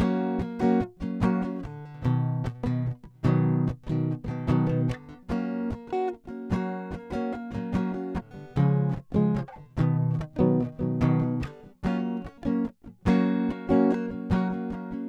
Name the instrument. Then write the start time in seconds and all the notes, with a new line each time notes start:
acoustic guitar
0.00 F#3 A#3 C#4 F#4
0.41 F#3 A#3 F#4
0.61 A#3 C#4 F#4
0.66 F#3
1.02 F#3 A#3 C#4
1.23 F#3 A#3 C#4 F#4
1.44 F#3 A#3 C#4
1.65 D3
1.87 D3
2.05 B2 D#3
2.65 B2 D#3 B3
3.26 B2 D#3 F#3 B3
3.88 D#3 F#3 B3
3.94 B2
4.26 D#3 F#3 B3
4.30 B2
4.50 B2 D#3 F#3 B3
4.68 D#3 F#3 B3
4.73 B2
4.93 D3
5.11 D3
5.31 F#3 A#3 C#4 F4
5.72 A#3
5.90 C#4
5.95 A#3 F#4
6.27 A#3 C#4 F#4
6.52 F#3 A#3 C#4 F#4
6.93 A#3 C#4
7.12 A#3 C#4 F#4
7.16 F#3
7.34 A#3 C#4
7.52 F#3 A#3 C#4
7.75 F#3 A#3 C#4 F#4
7.94 F#3 A#3 C#4 F#4
8.33 D3 G3 B3
8.58 C#3 F3 G#3
9.16 C#3 F3 G#3
9.58 D3
9.79 B2 D#3 F#3 B3
10.23 D#3
10.38 B3 D#4
10.42 B2 F#3
10.62 D#3
10.81 B2 D#3 F#3 B3
11.03 B2 D#3 F#3 B3
11.22 D#3 F#3 B3
11.45 D3 G3
11.52 B3
11.66 G3
11.85 F#3 A#3 C#4
11.90 F4
12.28 C#4
12.47 F#3 A#3 C#4
13.08 F#3 A#3 C#4 F#4
13.51 F#3 A#3 C#4
13.71 F#3 A#3 C#4 F#4
13.85 C#4
13.92 A#3 F#4
14.06 A#3
14.12 F#3 C#4
14.33 F#3 A#3 C#4
14.38 F#4
14.50 C#4 F#4
14.54 F#3 A#3
14.72 F#3 A#3 C#4
14.93 F#3 A#3 C#4